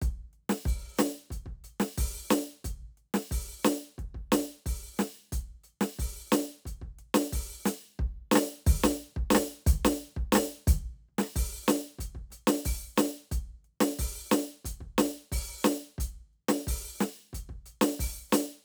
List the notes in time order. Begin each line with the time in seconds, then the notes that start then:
0.01 closed hi-hat, kick
0.33 closed hi-hat
0.49 snare
0.65 open hi-hat, kick
0.97 closed hi-hat, snare, hi-hat pedal
1.30 closed hi-hat, kick
1.46 kick
1.64 closed hi-hat
1.80 snare
1.98 open hi-hat, kick
2.29 closed hi-hat, snare, hi-hat pedal
2.64 closed hi-hat, kick
2.97 closed hi-hat
3.14 snare
3.31 open hi-hat, kick
3.63 closed hi-hat, snare, hi-hat pedal
3.98 kick, closed hi-hat
4.14 kick, crash
4.32 closed hi-hat, snare
4.66 open hi-hat, kick
4.96 closed hi-hat, snare, hi-hat pedal
5.32 closed hi-hat, kick
5.64 closed hi-hat
5.81 snare
5.99 open hi-hat, kick
6.32 closed hi-hat, snare, hi-hat pedal
6.65 closed hi-hat, kick
6.82 kick
6.99 closed hi-hat
7.14 snare
7.32 open hi-hat, kick
7.64 closed hi-hat, snare, hi-hat pedal
7.99 kick
8.31 snare
8.35 snare
8.66 open hi-hat, kick
8.84 snare
8.90 hi-hat pedal
9.16 kick
9.30 snare
9.35 snare
9.66 open hi-hat, kick
9.85 snare
9.96 hi-hat pedal
10.16 kick
10.32 snare
10.35 snare
10.67 closed hi-hat, kick
11.08 kick
11.18 snare
11.23 cross-stick
11.36 open hi-hat, kick
11.66 closed hi-hat, snare, hi-hat pedal
11.99 closed hi-hat, kick
12.15 kick
12.31 closed hi-hat, snare
12.47 snare
12.65 open hi-hat, kick
12.96 snare, closed hi-hat, hi-hat pedal
13.31 closed hi-hat, kick
13.64 closed hi-hat
13.81 snare
13.99 open hi-hat, kick
14.30 snare, closed hi-hat, hi-hat pedal
14.65 closed hi-hat, kick
14.81 kick
14.98 snare, closed hi-hat
15.32 open hi-hat, kick
15.63 snare, hi-hat pedal
15.98 closed hi-hat, kick
16.33 closed hi-hat
16.48 snare
16.67 open hi-hat, kick
16.99 closed hi-hat, snare, hi-hat pedal
17.33 closed hi-hat, kick
17.49 kick
17.66 closed hi-hat
17.81 snare
17.99 open hi-hat, kick
18.29 snare, hi-hat pedal
18.33 closed hi-hat